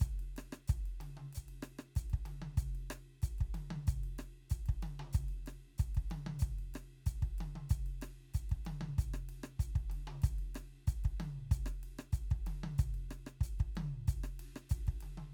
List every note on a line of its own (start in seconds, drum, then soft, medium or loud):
0.01 kick medium
0.01 hi-hat pedal medium
0.01 ride soft
0.20 ride soft
0.38 cross-stick medium
0.38 ride medium
0.53 cross-stick medium
0.69 kick medium
0.69 hi-hat pedal medium
0.69 ride soft
0.87 ride soft
1.01 high tom medium
1.01 ride medium
1.18 high tom medium
1.34 hi-hat pedal medium
1.34 ride soft
1.38 kick soft
1.49 ride soft
1.64 cross-stick medium
1.64 ride medium
1.80 cross-stick medium
1.97 kick soft
1.97 hi-hat pedal medium
1.97 ride soft
2.11 kick soft
2.11 ride soft
2.26 high tom medium
2.26 ride soft
2.43 high tom medium
2.58 kick medium
2.58 hi-hat pedal medium
2.58 ride soft
2.76 ride soft
2.91 cross-stick medium
2.91 ride soft
3.23 kick soft
3.23 hi-hat pedal medium
3.23 ride soft
3.39 kick soft
3.39 ride soft
3.55 high tom medium
3.55 ride soft
3.72 high tom loud
3.88 kick medium
3.88 hi-hat pedal medium
3.88 ride soft
4.05 ride soft
4.19 cross-stick medium
4.19 ride medium
4.51 kick soft
4.51 hi-hat pedal medium
4.51 ride soft
4.67 kick medium
4.67 ride soft
4.84 high tom medium
4.84 ride soft
5.00 high tom medium
5.14 kick medium
5.14 hi-hat pedal medium
5.14 ride soft
5.30 ride soft
5.47 cross-stick medium
5.47 ride medium
5.79 kick medium
5.79 hi-hat pedal medium
5.79 ride soft
5.96 kick soft
5.96 ride soft
6.11 high tom loud
6.11 ride soft
6.27 high tom loud
6.40 kick medium
6.40 hi-hat pedal medium
6.40 ride soft
6.60 ride soft
6.75 cross-stick medium
6.75 ride medium
7.07 kick soft
7.07 hi-hat pedal medium
7.07 ride soft
7.23 kick soft
7.23 ride soft
7.39 high tom medium
7.39 ride soft
7.57 high tom medium
7.70 kick medium
7.70 hi-hat pedal medium
7.70 ride soft
7.87 ride soft
8.03 cross-stick medium
8.03 ride medium
8.35 kick soft
8.35 hi-hat pedal medium
8.35 ride soft
8.51 kick soft
8.51 ride soft
8.66 high tom loud
8.66 ride soft
8.82 high tom loud
8.99 kick medium
8.99 hi-hat pedal medium
8.99 ride soft
9.15 cross-stick medium
9.15 ride soft
9.30 ride medium
9.44 cross-stick medium
9.60 kick medium
9.60 hi-hat pedal medium
9.60 ride soft
9.76 kick medium
9.76 ride soft
9.91 high tom medium
9.91 ride medium
10.08 high tom medium
10.23 kick medium
10.23 hi-hat pedal medium
10.23 ride medium
10.40 ride soft
10.56 cross-stick medium
10.56 ride medium
10.88 kick medium
10.88 hi-hat pedal medium
10.88 ride soft
11.05 kick medium
11.05 ride soft
11.21 high tom loud
11.21 ride soft
11.52 kick medium
11.52 hi-hat pedal medium
11.52 ride soft
11.67 cross-stick medium
11.67 ride soft
11.84 ride medium
12.00 cross-stick medium
12.14 kick medium
12.14 hi-hat pedal medium
12.14 ride soft
12.32 kick medium
12.32 ride soft
12.47 high tom medium
12.47 ride medium
12.64 high tom loud
12.79 kick medium
12.79 hi-hat pedal medium
12.79 ride soft
12.95 ride soft
13.12 cross-stick medium
13.12 ride soft
13.28 cross-stick medium
13.42 kick medium
13.42 hi-hat pedal medium
13.42 ride soft
13.60 kick medium
13.60 ride soft
13.77 high tom loud
13.77 ride soft
14.09 kick medium
14.09 hi-hat pedal medium
14.09 ride medium
14.25 cross-stick medium
14.25 ride soft
14.40 ride medium
14.57 cross-stick medium
14.70 kick medium
14.70 hi-hat pedal medium
14.70 ride medium
14.88 kick soft
14.88 ride soft
15.02 high tom medium
15.02 ride medium
15.18 high tom medium